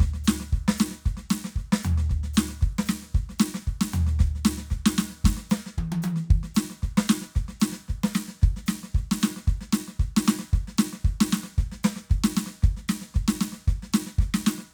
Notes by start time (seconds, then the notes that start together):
0.01 kick, snare
0.14 snare
0.25 snare, hi-hat pedal
0.41 snare
0.53 kick, snare
0.69 snare
0.78 snare, hi-hat pedal
0.92 snare
1.06 kick, snare
1.18 snare
1.31 snare, hi-hat pedal
1.45 snare
1.57 kick, snare
1.73 snare
1.84 floor tom, hi-hat pedal
1.98 snare
2.10 kick, snare
2.24 snare
2.35 snare, hi-hat pedal
2.49 snare
2.62 kick, snare
2.79 snare
2.87 snare, hi-hat pedal
3.03 snare
3.15 kick, snare
3.30 snare
3.40 snare, hi-hat pedal
3.55 snare
3.64 hi-hat pedal
3.68 kick, snare
3.82 snare
3.93 floor tom, hi-hat pedal
4.08 snare
4.20 kick, snare
4.36 snare
4.46 snare, hi-hat pedal
4.58 snare
4.69 kick, snare, hi-hat pedal
4.87 snare
4.98 snare, hi-hat pedal
5.11 snare
5.25 kick, snare
5.38 snare
5.51 snare, hi-hat pedal
5.67 snare
5.79 kick, high tom
5.93 high tom
6.03 hi-hat pedal, high tom
6.17 snare
6.31 kick
6.44 snare
6.55 snare, hi-hat pedal
6.71 snare
6.83 kick, snare
6.98 snare
7.08 snare, hi-hat pedal
7.22 snare
7.36 kick, snare
7.49 snare
7.61 snare, hi-hat pedal
7.73 snare
7.89 kick, snare
8.04 snare
8.14 snare, hi-hat pedal
8.29 snare
8.43 kick, snare
8.57 snare
8.67 snare, hi-hat pedal
8.84 snare
8.95 kick, snare
9.12 snare
9.21 snare, hi-hat pedal
9.37 snare
9.48 kick, snare
9.62 snare
9.73 snare, hi-hat pedal
9.89 snare
10.00 kick, snare
10.17 snare
10.26 snare, hi-hat pedal
10.40 snare
10.54 kick, snare
10.68 snare
10.79 snare, hi-hat pedal
10.94 snare
11.05 kick, snare
11.21 snare
11.31 snare, hi-hat pedal
11.44 snare
11.59 kick, snare
11.73 snare
11.84 snare, hi-hat pedal
11.97 snare
12.11 kick, snare
12.25 snare
12.37 snare, hi-hat pedal
12.47 snare
12.63 kick, snare
12.78 snare
12.89 snare, hi-hat pedal
13.02 snare
13.15 kick, snare
13.29 snare
13.42 snare, hi-hat pedal
13.53 snare
13.68 kick, snare
13.83 snare
13.94 snare, hi-hat pedal
14.07 snare
14.19 kick, snare
14.35 snare
14.47 snare, hi-hat pedal
14.59 snare